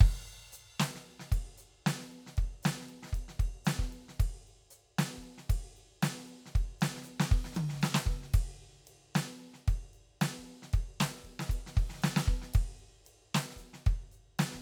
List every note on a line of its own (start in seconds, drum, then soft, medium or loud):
0.01 kick loud
0.01 crash medium
0.53 hi-hat pedal medium
0.80 snare loud
0.80 crash soft
0.96 snare soft
1.20 snare medium
1.33 kick medium
1.33 crash medium
1.58 hi-hat pedal medium
1.87 snare loud
1.87 crash soft
2.01 snare soft
2.12 crash soft
2.27 snare soft
2.38 kick medium
2.38 crash soft
2.64 snare loud
2.64 hi-hat pedal medium
2.64 crash soft
2.81 snare soft
2.84 snare soft
2.89 crash soft
3.03 snare soft
3.07 snare soft
3.14 kick medium
3.14 crash soft
3.29 snare soft
3.40 kick medium
3.40 crash soft
3.66 snare loud
3.66 hi-hat pedal medium
3.66 crash soft
3.80 kick medium
3.80 snare soft
3.93 crash soft
4.09 snare soft
4.20 kick medium
4.20 crash medium
4.48 crash soft
4.71 hi-hat pedal medium
4.71 crash soft
4.99 snare loud
4.99 crash medium
5.15 kick soft
5.15 snare soft
5.21 hi-hat pedal soft
5.25 crash soft
5.39 snare soft
5.50 kick medium
5.50 crash medium
5.76 hi-hat pedal soft
5.76 crash soft
6.03 snare loud
6.03 crash medium
6.19 snare soft
6.26 hi-hat pedal soft
6.26 crash soft
6.47 snare soft
6.56 kick medium
6.56 crash soft
6.79 snare loud
6.79 hi-hat pedal soft
6.79 crash soft
6.97 snare medium
7.02 snare soft
7.02 hi-hat pedal medium
7.07 crash soft
7.21 snare loud
7.32 kick medium
7.32 crash soft
7.45 snare medium
7.53 snare soft
7.53 hi-hat pedal medium
7.53 high tom loud
7.70 snare medium
7.74 kick soft
7.74 snare soft
7.77 snare soft
7.82 snare loud
7.82 hi-hat pedal medium
7.95 snare loud
8.07 kick medium
8.07 snare soft
8.23 snare soft
8.32 kick medium
8.32 hi-hat pedal soft
8.32 crash medium
8.85 hi-hat pedal soft
8.85 crash soft
9.16 snare loud
9.16 crash soft
9.39 hi-hat pedal soft
9.54 snare soft
9.69 kick medium
9.69 crash soft
9.94 hi-hat pedal soft
9.94 crash soft
10.22 snare loud
10.22 crash medium
10.40 kick soft
10.48 crash soft
10.63 snare soft
10.74 kick medium
10.74 crash soft
11.01 snare loud
11.01 crash soft
11.19 snare soft
11.25 kick soft
11.25 crash soft
11.40 snare medium
11.49 kick medium
11.49 hi-hat pedal soft
11.49 crash medium
11.67 snare medium
11.76 kick medium
11.76 snare soft
11.76 crash soft
11.90 snare soft
11.94 snare soft
11.97 snare soft
12.03 snare loud
12.03 hi-hat pedal medium
12.17 snare loud
12.28 kick medium
12.28 snare soft
12.43 snare soft
12.55 kick medium
12.55 crash medium
12.79 crash soft
13.06 hi-hat pedal soft
13.06 crash soft
13.35 snare loud
13.35 crash soft
13.51 snare soft
13.54 kick soft
13.54 snare soft
13.59 hi-hat pedal soft
13.74 snare soft
13.87 kick medium
13.87 crash soft
14.12 hi-hat pedal soft
14.12 crash soft
14.40 snare loud
14.40 crash medium
14.53 kick soft
14.53 snare soft
14.58 snare soft